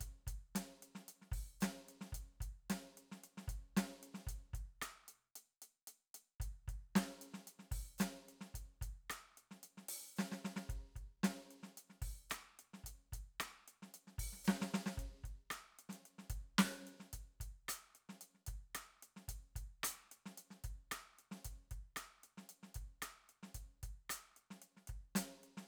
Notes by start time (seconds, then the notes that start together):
0.01 kick, closed hi-hat
0.27 kick, closed hi-hat
0.56 snare, closed hi-hat
0.83 closed hi-hat
0.96 snare
1.09 closed hi-hat
1.22 snare
1.32 kick, open hi-hat
1.61 snare, closed hi-hat, hi-hat pedal
1.89 closed hi-hat
2.01 snare
2.13 kick, closed hi-hat
2.41 kick, closed hi-hat
2.70 snare, closed hi-hat
2.98 closed hi-hat
3.12 snare
3.24 closed hi-hat
3.38 snare
3.48 kick, closed hi-hat
3.77 snare, closed hi-hat
4.03 closed hi-hat
4.15 snare
4.27 kick, closed hi-hat
4.54 kick, closed hi-hat
4.82 cross-stick, closed hi-hat
5.09 closed hi-hat
5.36 closed hi-hat
5.62 closed hi-hat
5.88 closed hi-hat
6.15 closed hi-hat
6.40 kick, closed hi-hat
6.68 kick, closed hi-hat
6.96 snare, closed hi-hat
7.22 closed hi-hat
7.34 snare
7.48 closed hi-hat
7.59 snare
7.72 kick, open hi-hat
7.99 snare, closed hi-hat, hi-hat pedal
8.29 closed hi-hat
8.41 snare
8.55 kick, closed hi-hat
8.82 kick, closed hi-hat
9.10 cross-stick, closed hi-hat
9.38 closed hi-hat
9.51 snare
9.64 closed hi-hat
9.78 snare
9.89 open hi-hat
10.17 snare, hi-hat pedal
10.32 snare
10.45 snare
10.57 snare
10.70 kick, closed hi-hat
10.96 kick, closed hi-hat
11.24 snare, closed hi-hat
11.51 closed hi-hat
11.64 snare
11.78 closed hi-hat
11.90 snare
12.02 kick, open hi-hat
12.30 cross-stick, closed hi-hat, hi-hat pedal
12.59 closed hi-hat
12.74 snare
12.84 kick, closed hi-hat
13.13 kick, closed hi-hat
13.41 cross-stick, closed hi-hat
13.68 closed hi-hat
13.83 snare
13.95 closed hi-hat
14.08 snare
14.19 kick, open hi-hat
14.33 snare
14.45 snare, hi-hat pedal
14.62 snare
14.74 snare
14.86 snare
14.98 kick, closed hi-hat
15.24 kick, closed hi-hat
15.51 cross-stick, closed hi-hat
15.79 closed hi-hat
15.90 snare, closed hi-hat
16.06 closed hi-hat
16.19 snare
16.30 kick, closed hi-hat
16.59 snare, closed hi-hat
16.65 snare
16.87 closed hi-hat
17.00 snare
17.14 kick, closed hi-hat
17.41 kick, closed hi-hat
17.69 closed hi-hat, cross-stick
17.96 closed hi-hat
18.09 snare
18.22 closed hi-hat
18.35 snare
18.47 kick, closed hi-hat
18.75 cross-stick, closed hi-hat
19.03 closed hi-hat
19.17 snare
19.29 kick, closed hi-hat
19.56 kick, closed hi-hat
19.84 closed hi-hat, cross-stick
20.12 closed hi-hat
20.26 snare
20.38 closed hi-hat
20.51 snare
20.64 kick, closed hi-hat
20.92 cross-stick, closed hi-hat
21.19 closed hi-hat
21.32 snare
21.45 kick, closed hi-hat
21.72 kick, closed hi-hat
21.97 cross-stick, closed hi-hat
22.24 closed hi-hat
22.38 snare
22.50 closed hi-hat
22.63 snare
22.75 kick, closed hi-hat
23.03 cross-stick, closed hi-hat
23.30 closed hi-hat
23.43 snare
23.55 kick, closed hi-hat
23.83 kick, closed hi-hat
24.10 closed hi-hat, cross-stick
24.37 closed hi-hat
24.51 snare
24.62 closed hi-hat
24.77 snare
24.88 kick, closed hi-hat
25.16 closed hi-hat, snare
25.44 closed hi-hat
25.58 snare